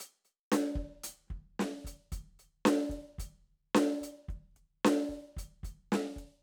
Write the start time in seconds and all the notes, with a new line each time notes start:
0.03 closed hi-hat
0.25 closed hi-hat
0.52 closed hi-hat, snare
0.75 kick
1.04 closed hi-hat
1.27 kick, snare, closed hi-hat
1.59 snare
1.84 closed hi-hat, kick
2.12 closed hi-hat, kick
2.39 closed hi-hat
2.65 snare
2.90 kick, closed hi-hat
3.18 closed hi-hat, kick
3.75 snare
4.01 closed hi-hat, kick
4.28 kick, closed hi-hat
4.55 kick, closed hi-hat
4.85 snare
5.09 kick, closed hi-hat
5.37 closed hi-hat, kick
5.63 closed hi-hat, kick
5.92 snare
6.16 kick, closed hi-hat